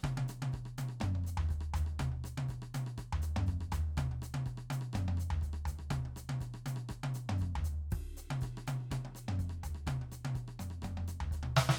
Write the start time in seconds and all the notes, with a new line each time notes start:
0.01 kick, cross-stick, hi-hat pedal, high tom
0.18 high tom
0.29 cross-stick, hi-hat pedal
0.43 high tom
0.53 kick, cross-stick, hi-hat pedal
0.66 cross-stick
0.79 hi-hat pedal, high tom
0.89 cross-stick
1.01 kick, cross-stick, hi-hat pedal, mid tom
1.16 mid tom
1.25 cross-stick, hi-hat pedal
1.38 cross-stick, floor tom
1.49 kick, cross-stick, hi-hat pedal
1.61 cross-stick
1.74 floor tom, hi-hat pedal
1.87 cross-stick
2.00 kick, cross-stick, hi-hat pedal, high tom
2.12 high tom
2.16 high tom
2.25 cross-stick, hi-hat pedal
2.38 high tom
2.49 kick, cross-stick, hi-hat pedal
2.63 cross-stick
2.75 hi-hat pedal, high tom
2.87 cross-stick
2.98 kick, cross-stick, hi-hat pedal
3.13 floor tom
3.23 cross-stick, hi-hat pedal
3.37 mid tom
3.47 kick, cross-stick, hi-hat pedal
3.61 cross-stick
3.73 cross-stick, floor tom, hi-hat pedal
3.98 kick, cross-stick, hi-hat pedal, high tom
4.12 high tom
4.23 cross-stick, hi-hat pedal
4.35 high tom
4.46 kick, cross-stick, hi-hat pedal
4.58 cross-stick
4.71 hi-hat pedal, high tom
4.82 cross-stick
4.94 kick, cross-stick, hi-hat pedal, mid tom
5.09 mid tom
5.18 cross-stick, hi-hat pedal
5.31 floor tom
5.42 kick, cross-stick, hi-hat pedal
5.54 cross-stick
5.66 floor tom, hi-hat pedal
5.79 cross-stick
5.91 kick, cross-stick, hi-hat pedal, high tom
6.06 high tom
6.10 high tom
6.17 cross-stick, hi-hat pedal
6.30 high tom
6.41 kick, cross-stick, hi-hat pedal
6.55 cross-stick
6.67 hi-hat pedal, high tom
6.77 cross-stick
6.90 kick, cross-stick, hi-hat pedal
7.04 high tom
7.15 cross-stick, hi-hat pedal
7.30 mid tom
7.39 kick, cross-stick, hi-hat pedal
7.56 floor tom
7.65 cross-stick, hi-hat pedal
7.91 kick, hi-hat pedal, ride
8.18 hi-hat pedal
8.31 high tom
8.41 kick, cross-stick, hi-hat pedal
8.58 cross-stick
8.68 hi-hat pedal, high tom
8.81 cross-stick
8.91 kick, cross-stick, hi-hat pedal, high tom
9.06 high tom
9.16 cross-stick, hi-hat pedal
9.29 mid tom
9.40 kick, hi-hat pedal
9.50 cross-stick
9.64 floor tom, hi-hat pedal
9.75 cross-stick
9.87 kick, cross-stick, hi-hat pedal, high tom
10.02 high tom
10.12 cross-stick, hi-hat pedal
10.25 high tom
10.36 kick, cross-stick, hi-hat pedal
10.49 cross-stick
10.60 hi-hat pedal, mid tom
10.71 cross-stick
10.83 kick, cross-stick, hi-hat pedal, mid tom
10.98 mid tom
11.08 cross-stick, hi-hat pedal
11.21 floor tom
11.32 kick, cross-stick, hi-hat pedal
11.44 high tom
11.57 snare, hi-hat pedal
11.70 snare